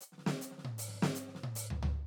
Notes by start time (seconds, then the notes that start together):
0.02 hi-hat pedal
0.12 snare
0.18 snare
0.26 snare
0.41 hi-hat pedal
0.51 snare
0.58 snare
0.65 high tom
0.78 hi-hat pedal
0.88 snare
0.94 snare
1.02 snare
1.15 hi-hat pedal
1.28 snare
1.35 snare
1.43 high tom
1.55 hi-hat pedal
1.70 floor tom
1.83 floor tom